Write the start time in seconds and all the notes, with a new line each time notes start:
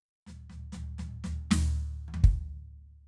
0.27 snare, floor tom
0.50 snare, floor tom
0.72 snare, floor tom
0.98 snare, floor tom
1.24 snare, floor tom
1.51 snare, floor tom
2.08 high tom
2.14 floor tom
2.24 kick